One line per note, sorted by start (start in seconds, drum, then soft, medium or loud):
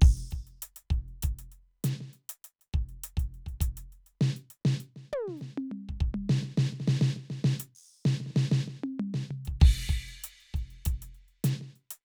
0.01 kick loud
0.01 crash medium
0.17 closed hi-hat soft
0.31 closed hi-hat soft
0.31 kick soft
0.47 closed hi-hat soft
0.62 closed hi-hat loud
0.76 closed hi-hat medium
0.90 kick medium
0.90 closed hi-hat soft
1.08 closed hi-hat soft
1.23 closed hi-hat loud
1.23 kick medium
1.39 closed hi-hat medium
1.52 closed hi-hat soft
1.84 closed hi-hat loud
1.84 snare loud
2.01 snare soft
2.13 closed hi-hat soft
2.29 closed hi-hat loud
2.44 closed hi-hat medium
2.61 closed hi-hat soft
2.73 kick medium
2.73 closed hi-hat soft
2.89 closed hi-hat soft
3.04 closed hi-hat loud
3.17 closed hi-hat medium
3.17 kick medium
3.34 closed hi-hat soft
3.46 kick soft
3.46 closed hi-hat soft
3.61 closed hi-hat loud
3.61 kick medium
3.77 closed hi-hat medium
3.92 closed hi-hat soft
4.06 closed hi-hat soft
4.21 snare loud
4.36 closed hi-hat soft
4.50 closed hi-hat medium
4.65 snare loud
4.80 closed hi-hat medium
4.96 snare soft
5.12 high tom loud
5.28 snare soft
5.37 hi-hat pedal soft
5.41 snare soft
5.58 high tom loud
5.71 mid tom medium
5.89 kick soft
6.00 kick medium
6.14 mid tom loud
6.29 snare loud
6.43 snare medium
6.58 snare loud
6.73 snare soft
6.80 snare medium
6.88 snare loud
7.01 snare loud
7.16 snare soft
7.30 snare medium
7.44 snare loud
7.60 closed hi-hat loud
7.75 crash soft
8.05 snare loud
8.20 snare soft
8.26 snare soft
8.30 snare soft
8.36 snare loud
8.52 snare loud
8.68 snare medium
8.84 high tom loud
9.00 mid tom loud
9.14 snare medium
9.31 floor tom medium
9.45 closed hi-hat medium
9.45 kick soft
9.60 kick loud
9.60 crash loud
9.89 closed hi-hat soft
9.89 kick medium
10.08 closed hi-hat soft
10.24 closed hi-hat loud
10.40 closed hi-hat soft
10.54 kick medium
10.54 closed hi-hat soft
10.70 closed hi-hat soft
10.85 closed hi-hat loud
10.85 kick medium
11.02 closed hi-hat medium
11.14 closed hi-hat soft
11.28 closed hi-hat soft
11.44 closed hi-hat loud
11.44 snare loud
11.61 snare soft
11.76 closed hi-hat soft
11.91 closed hi-hat loud